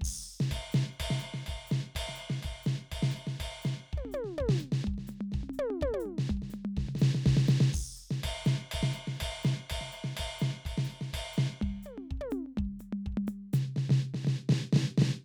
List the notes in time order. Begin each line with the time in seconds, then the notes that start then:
0.01 kick, snare
0.05 kick, crash
0.13 kick
0.22 hi-hat pedal
0.41 snare
0.52 kick, ride bell
0.72 snare, hi-hat pedal
0.93 hi-hat pedal
1.01 kick, ride bell
1.11 snare
1.20 hi-hat pedal, ride
1.35 snare
1.40 hi-hat pedal
1.47 kick, ride bell
1.68 hi-hat pedal
1.72 snare
1.96 kick, ride bell
2.09 snare
2.16 hi-hat pedal, ride
2.31 snare
2.43 kick, ride bell
2.63 snare, hi-hat pedal
2.92 kick, ride bell
3.03 snare
3.11 hi-hat pedal
3.17 ride
3.28 snare
3.41 kick, ride bell
3.46 kick
3.63 snare, hi-hat pedal
3.94 kick
3.98 kick, high tom
4.06 high tom
4.12 hi-hat pedal, high tom
4.25 snare
4.38 kick, high tom
4.47 kick, snare
4.60 hi-hat pedal
4.73 snare
4.85 kick, mid tom
4.95 kick
4.99 snare
5.08 snare, hi-hat pedal, mid tom
5.21 mid tom
5.33 kick, snare
5.41 kick, high tom
5.50 hi-hat pedal, high tom
5.59 high tom
5.71 high tom
5.82 kick, high tom
5.89 kick
5.94 high tom
6.01 hi-hat pedal
6.06 mid tom
6.19 snare
6.30 kick, mid tom
6.38 kick
6.43 snare
6.51 snare, hi-hat pedal
6.55 mid tom
6.66 mid tom
6.78 kick, snare
6.84 kick
6.89 floor tom
6.96 snare, hi-hat pedal
7.03 snare
7.15 snare
7.27 kick, snare
7.34 kick, snare
7.48 snare, hi-hat pedal
7.61 snare
7.74 kick, crash
7.81 kick
7.86 kick
7.97 hi-hat pedal
8.11 snare
8.24 kick, ride
8.31 kick
8.45 snare, hi-hat pedal
8.72 kick, ride
8.80 kick, snare
8.94 hi-hat pedal, ride
9.08 snare
9.15 hi-hat pedal
9.21 kick, ride bell
9.43 snare, hi-hat pedal
9.70 kick, ride bell
9.78 kick
9.82 snare
9.93 hi-hat pedal, ride
10.05 snare
10.18 kick, ride bell
10.39 snare, hi-hat pedal
10.66 kick, ride bell
10.72 kick
10.79 snare
10.85 hi-hat pedal
10.91 ride
11.02 snare
11.14 kick, ride bell
11.34 hi-hat pedal
11.39 snare
11.62 kick, mid tom
11.70 kick
11.83 hi-hat pedal, high tom
11.98 high tom
12.11 kick, high tom
12.18 kick, high tom
12.31 hi-hat pedal, high tom
12.47 high tom
12.58 kick, mid tom
12.66 kick
12.80 hi-hat pedal, mid tom
12.93 mid tom
13.07 kick, mid tom
13.13 kick
13.18 mid tom
13.28 hi-hat pedal, mid tom
13.54 snare, hi-hat pedal, floor tom
13.77 snare, floor tom
13.90 snare, floor tom
14.15 snare, floor tom
14.26 snare, floor tom
14.50 snare
14.53 snare
14.73 snare
14.77 snare
14.98 snare
15.03 snare